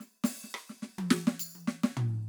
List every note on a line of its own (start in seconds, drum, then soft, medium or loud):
0.01 snare soft
0.01 percussion soft
0.24 snare loud
0.24 percussion loud
0.44 snare soft
0.55 high tom loud
0.70 snare soft
0.83 snare medium
0.99 high tom loud
0.99 percussion soft
1.11 snare loud
1.28 snare loud
1.40 percussion loud
1.55 high tom medium
1.68 snare loud
1.84 snare loud
1.97 floor tom loud